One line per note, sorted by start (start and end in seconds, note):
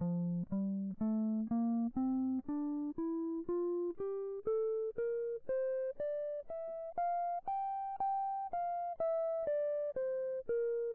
0.03 0.47 F3
0.53 0.96 G3
1.02 1.51 A3
1.52 1.92 A#3
1.98 2.44 C4
2.49 2.95 D4
2.99 3.46 E4
3.49 3.95 F4
4.01 4.43 G4
4.48 4.94 A4
4.99 5.40 A#4
5.50 5.94 C5
6.01 6.43 D5
6.51 6.94 E5
6.98 7.42 F5
7.48 8.00 G5
8.01 8.51 G5
8.54 8.97 F5
9.01 9.49 E5
9.48 9.94 D5
9.97 10.44 C5
10.50 10.94 A#4